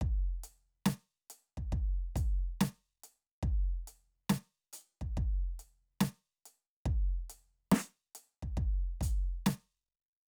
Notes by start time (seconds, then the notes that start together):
0.01 kick
0.44 closed hi-hat
0.86 snare
1.30 closed hi-hat
1.57 kick
1.72 kick, crash
2.16 kick, closed hi-hat
2.61 snare
3.04 closed hi-hat
3.43 kick
3.87 closed hi-hat
4.29 snare
4.73 closed hi-hat
5.01 kick
5.17 kick
5.59 closed hi-hat
6.01 snare
6.46 closed hi-hat
6.86 kick
7.30 closed hi-hat
7.72 snare
8.15 closed hi-hat
8.43 kick
8.57 kick
9.01 closed hi-hat, kick
9.46 snare